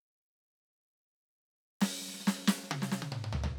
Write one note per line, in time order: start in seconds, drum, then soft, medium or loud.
1.81 snare loud
1.81 ride loud
2.01 snare soft
2.08 snare soft
2.14 snare soft
2.20 snare soft
2.25 snare soft
2.27 snare loud
2.38 snare soft
2.42 snare soft
2.48 snare loud
2.57 snare soft
2.63 snare soft
2.68 snare soft
2.68 high tom loud
2.82 snare medium
2.92 snare loud
3.02 open hi-hat soft
3.02 high tom loud
3.12 mid tom loud
3.24 mid tom loud
3.33 floor tom loud
3.44 floor tom loud